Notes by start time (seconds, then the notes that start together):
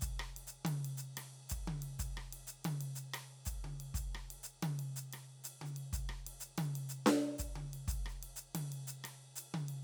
0.01 kick, hi-hat pedal, ride
0.19 cross-stick
0.36 ride
0.47 hi-hat pedal
0.65 high tom, ride
0.85 ride
0.97 hi-hat pedal
1.17 cross-stick, ride
1.49 kick, hi-hat pedal, ride
1.67 high tom
1.82 ride
1.99 kick, hi-hat pedal, ride
2.17 cross-stick
2.33 ride
2.47 hi-hat pedal
2.64 high tom, ride
2.69 hi-hat pedal
2.81 ride
2.95 hi-hat pedal
3.14 cross-stick, ride
3.45 kick, hi-hat pedal, ride
3.64 high tom
3.80 ride
3.94 kick, hi-hat pedal, ride
4.15 cross-stick
4.30 ride
4.43 hi-hat pedal
4.62 high tom, ride
4.79 ride
4.96 hi-hat pedal
5.13 cross-stick, ride
5.18 hi-hat pedal
5.44 hi-hat pedal, ride
5.61 high tom
5.65 hi-hat pedal
5.76 ride
5.93 kick, hi-hat pedal, ride
6.09 cross-stick
6.27 ride
6.40 hi-hat pedal
6.58 high tom, ride
6.62 hi-hat pedal
6.75 ride
6.89 hi-hat pedal
7.06 snare, ride
7.38 kick, hi-hat pedal, ride
7.55 high tom
7.73 ride
7.88 kick, hi-hat pedal, ride
8.06 cross-stick, hi-hat pedal
8.23 ride
8.36 hi-hat pedal
8.55 high tom, ride
8.72 ride
8.87 hi-hat pedal
9.04 cross-stick, ride
9.36 hi-hat pedal, ride
9.54 hi-hat pedal, high tom
9.68 ride